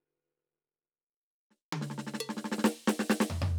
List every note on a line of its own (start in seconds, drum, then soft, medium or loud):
1.50 snare soft
1.72 high tom loud
1.81 snare medium
1.90 snare soft
1.98 snare medium
2.07 snare medium
2.14 snare medium
2.20 percussion loud
2.29 snare medium
2.37 snare medium
2.44 snare medium
2.51 snare medium
2.58 snare medium
2.64 snare loud
2.87 snare loud
2.99 snare medium
3.10 snare loud
3.20 snare loud
3.30 floor tom loud
3.42 floor tom loud